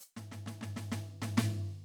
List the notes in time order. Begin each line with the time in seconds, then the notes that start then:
0.00 hi-hat pedal
0.17 snare, floor tom
0.32 snare, floor tom
0.46 snare, floor tom
0.61 snare, floor tom
0.76 snare, floor tom
0.92 snare, floor tom
1.22 snare, floor tom
1.37 snare, floor tom